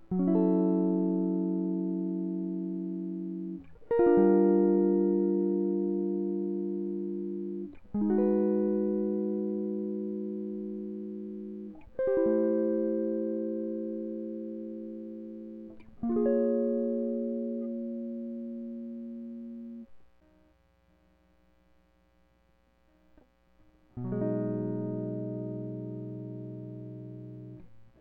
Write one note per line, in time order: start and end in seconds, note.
0.12 3.59 F#3
0.19 3.67 C#4
0.28 3.59 E4
0.35 2.87 A4
3.91 7.52 A#4
3.99 7.70 F4
4.07 7.80 D4
4.18 7.70 G3
7.95 11.75 G#3
8.01 11.85 D#4
8.10 11.70 F#4
8.18 11.47 B4
11.99 15.75 C5
12.08 14.61 G4
12.17 15.78 E4
12.27 15.78 A3
16.04 19.86 A#3
16.10 19.84 F4
16.16 17.71 G#4
16.26 19.24 C#5
24.19 27.57 B2
24.19 27.66 F#3
24.19 27.54 G#3
24.19 27.62 D#4